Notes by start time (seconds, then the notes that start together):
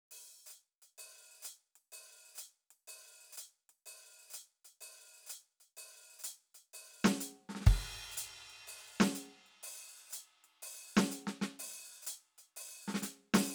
0.11 open hi-hat
0.46 closed hi-hat, hi-hat pedal
0.82 closed hi-hat
0.98 open hi-hat
1.42 closed hi-hat, hi-hat pedal
1.76 closed hi-hat
1.92 open hi-hat
2.35 closed hi-hat, hi-hat pedal
2.71 closed hi-hat
2.87 open hi-hat
3.32 hi-hat pedal
3.37 closed hi-hat
3.69 closed hi-hat
3.86 open hi-hat
4.30 closed hi-hat, hi-hat pedal
4.65 closed hi-hat
4.81 open hi-hat
5.26 closed hi-hat, hi-hat pedal
5.60 closed hi-hat
5.77 open hi-hat
6.19 hi-hat pedal
6.24 closed hi-hat
6.54 closed hi-hat
6.73 open hi-hat
7.04 snare, hi-hat pedal
7.20 closed hi-hat
7.49 snare
7.55 snare
7.60 snare
7.66 kick, snare, crash
8.11 hi-hat pedal
8.17 closed hi-hat
8.50 closed hi-hat
8.67 open hi-hat
9.00 snare
9.05 hi-hat pedal
9.15 closed hi-hat
9.46 closed hi-hat
9.63 open hi-hat
10.10 closed hi-hat, hi-hat pedal
10.44 closed hi-hat
10.62 open hi-hat
10.97 snare
11.04 hi-hat pedal
11.11 closed hi-hat
11.27 snare
11.41 snare
11.59 open hi-hat
12.02 hi-hat pedal
12.07 closed hi-hat
12.38 closed hi-hat
12.56 open hi-hat
12.88 snare
12.94 snare, hi-hat pedal
13.02 closed hi-hat, snare
13.34 open hi-hat, snare